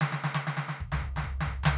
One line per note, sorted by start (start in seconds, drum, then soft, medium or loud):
0.01 snare loud
0.12 snare medium
0.24 snare loud
0.34 snare medium
0.47 snare medium
0.57 snare medium
0.68 snare medium
0.80 kick soft
0.92 snare medium
0.92 floor tom loud
1.01 kick soft
1.16 snare medium
1.16 floor tom loud
1.24 kick soft
1.41 snare loud
1.41 floor tom medium
1.46 kick soft
1.63 snare loud
1.63 floor tom loud